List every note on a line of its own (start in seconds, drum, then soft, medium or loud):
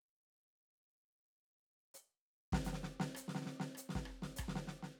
1.94 hi-hat pedal medium
2.52 kick soft
2.52 snare medium
2.59 kick soft
2.65 snare soft
2.65 hi-hat pedal soft
2.73 snare soft
3.00 snare medium
3.15 cross-stick soft
3.15 hi-hat pedal medium
3.28 snare soft
3.35 snare soft
3.41 snare soft
3.46 snare soft
3.60 snare soft
3.75 cross-stick soft
3.75 hi-hat pedal medium
3.89 snare soft
3.95 kick soft
3.95 snare soft
4.05 cross-stick soft
4.22 kick soft
4.22 snare soft
4.36 kick soft
4.36 cross-stick medium
4.36 hi-hat pedal medium
4.48 snare soft
4.56 snare soft
4.67 snare soft
4.83 snare soft